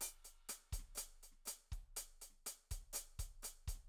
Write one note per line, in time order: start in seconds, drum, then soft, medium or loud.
0.01 open hi-hat medium
0.01 cross-stick soft
0.25 closed hi-hat soft
0.49 closed hi-hat medium
0.49 cross-stick soft
0.73 closed hi-hat soft
0.73 kick soft
0.79 snare soft
0.95 closed hi-hat medium
0.95 cross-stick soft
0.95 hi-hat pedal soft
1.23 closed hi-hat soft
1.32 snare soft
1.46 closed hi-hat medium
1.46 cross-stick soft
1.46 hi-hat pedal soft
1.72 kick soft
1.72 closed hi-hat soft
1.97 open hi-hat medium
1.97 cross-stick soft
2.22 closed hi-hat soft
2.30 snare soft
2.32 snare soft
2.46 closed hi-hat medium
2.46 cross-stick soft
2.71 closed hi-hat soft
2.71 kick soft
2.81 snare soft
2.93 closed hi-hat medium
2.93 cross-stick soft
2.93 hi-hat pedal medium
3.19 closed hi-hat soft
3.19 kick soft
3.43 closed hi-hat medium
3.43 cross-stick soft
3.43 hi-hat pedal soft
3.68 closed hi-hat soft
3.68 kick soft
3.75 snare soft